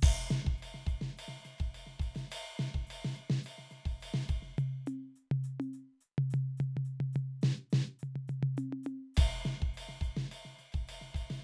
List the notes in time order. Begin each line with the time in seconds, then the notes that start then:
0.01 kick, hi-hat pedal, crash, ride
0.29 snare, hi-hat pedal
0.45 kick, snare
0.59 hi-hat pedal
0.63 ride bell
0.75 snare
0.87 kick, hi-hat pedal, ride
1.02 snare, ride
1.18 hi-hat pedal, ride bell
1.29 snare
1.45 snare, hi-hat pedal, ride
1.59 kick, ride
1.75 hi-hat pedal, ride bell
1.87 snare
2.00 kick, hi-hat pedal, ride
2.16 snare, ride
2.32 hi-hat pedal, ride bell
2.58 snare, hi-hat pedal, ride
2.75 kick, snare
2.87 hi-hat pedal, ride bell
3.05 snare
3.15 hi-hat pedal, ride bell
3.31 snare
3.44 hi-hat pedal, ride bell
3.59 snare
3.71 snare, hi-hat pedal, ride bell
3.86 kick, ride
4.01 hi-hat pedal, ride bell
4.15 snare
4.29 kick, hi-hat pedal, ride bell
4.43 snare
4.58 floor tom, hi-hat pedal
4.87 closed hi-hat, hi-hat pedal, high tom
5.16 hi-hat pedal
5.32 floor tom
5.45 hi-hat pedal
5.61 open hi-hat, high tom
5.74 hi-hat pedal
6.01 hi-hat pedal
6.19 floor tom
6.31 floor tom, hi-hat pedal
6.58 floor tom, hi-hat pedal
6.78 floor tom
6.86 hi-hat pedal
7.01 floor tom
7.14 floor tom, hi-hat pedal
7.42 snare, hi-hat pedal
7.71 snare, hi-hat pedal
8.00 hi-hat pedal
8.04 floor tom
8.16 floor tom
8.29 floor tom, hi-hat pedal
8.44 floor tom
8.58 hi-hat pedal, high tom
8.73 high tom
8.84 hi-hat pedal, high tom
9.15 kick, hi-hat pedal, ride
9.44 snare, hi-hat pedal
9.61 kick, snare
9.75 hi-hat pedal, ride bell
9.89 snare
10.02 kick, hi-hat pedal, ride
10.17 snare, ride
10.32 hi-hat pedal, ride bell
10.46 snare
10.59 snare, hi-hat pedal, ride
10.73 kick, ride
10.88 hi-hat pedal, ride bell
11.02 snare
11.15 kick, hi-hat pedal, ride
11.31 snare, ride